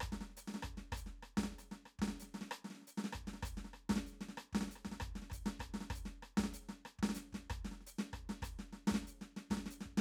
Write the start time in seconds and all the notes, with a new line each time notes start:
0.01 kick, cross-stick
0.13 snare
0.21 snare
0.30 snare
0.37 cross-stick, hi-hat pedal
0.44 snare
0.48 snare
0.55 snare
0.63 kick, cross-stick
0.78 snare
0.93 kick, cross-stick
0.97 hi-hat pedal
1.07 snare
1.23 cross-stick
1.38 kick, snare
1.44 snare
1.53 snare
1.59 cross-stick, hi-hat pedal
1.63 snare
1.72 snare
1.86 cross-stick
1.99 kick, snare
2.08 snare
2.16 snare
2.20 cross-stick, snare, hi-hat pedal
2.28 snare
2.35 snare
2.42 snare
2.47 snare
2.52 cross-stick
2.65 snare
2.71 snare
2.75 snare
2.82 snare
2.88 cross-stick, hi-hat pedal
2.98 snare
3.05 snare
3.13 kick, cross-stick
3.28 snare
3.34 snare
3.43 kick, cross-stick, hi-hat pedal
3.58 snare
3.65 snare
3.74 cross-stick
3.90 kick, snare
3.96 snare
4.05 snare, hi-hat pedal
4.13 snare
4.21 snare
4.29 snare
4.38 cross-stick
4.53 kick, snare
4.61 snare
4.68 snare, hi-hat pedal
4.76 cross-stick
4.85 kick, snare
4.92 snare
5.01 kick, cross-stick
5.16 snare
5.22 snare
5.31 kick, cross-stick, hi-hat pedal
5.46 snare
5.60 kick, cross-stick
5.74 snare
5.81 snare
5.91 kick, cross-stick
5.96 kick, hi-hat pedal
6.06 snare
6.23 cross-stick
6.38 kick, snare
6.44 snare
6.54 snare, hi-hat pedal
6.62 snare
6.69 snare
6.86 cross-stick
6.99 kick
7.03 snare
7.10 snare
7.15 snare, hi-hat pedal
7.33 kick, snare
7.51 kick, cross-stick
7.65 snare
7.72 snare
7.81 snare
7.87 hi-hat pedal
7.99 snare
8.14 kick, cross-stick
8.30 snare
8.43 kick, cross-stick, hi-hat pedal
8.60 snare
8.73 snare
8.88 kick, snare
8.95 snare
9.03 snare
9.08 hi-hat pedal
9.22 snare
9.37 snare
9.51 kick, snare
9.58 snare
9.66 snare
9.71 hi-hat pedal
9.81 snare
9.86 kick
9.98 snare